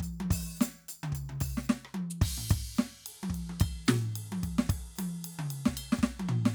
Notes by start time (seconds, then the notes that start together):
0.01 kick, percussion
0.21 high tom
0.31 kick, percussion
0.58 snare, percussion
0.62 percussion
0.89 percussion
1.04 mid tom
1.13 kick, percussion
1.30 mid tom
1.41 kick, percussion
1.58 snare
1.64 percussion
1.70 snare
1.86 high tom
1.95 high tom
2.11 floor tom
2.22 kick, crash
2.39 floor tom
2.51 kick, ride bell
2.76 snare, percussion
3.07 ride
3.24 high tom
3.31 kick
3.35 ride
3.50 high tom
3.61 kick, ride bell
3.87 snare, floor tom, percussion
4.17 ride
4.33 high tom
4.44 kick, ride
4.59 snare
4.70 kick, ride
4.97 high tom, ride, percussion
5.25 ride
5.32 percussion
5.40 mid tom
5.51 ride
5.67 kick, snare
5.78 ride bell
5.93 snare, percussion
5.99 kick
6.04 snare
6.20 high tom
6.30 floor tom
6.46 snare